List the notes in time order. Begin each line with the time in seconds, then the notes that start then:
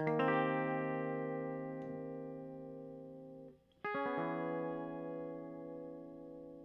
0.00 D#3
0.08 A#3
0.20 C4
0.28 G4
3.85 G#4
3.95 C#4
4.06 B3
4.19 E3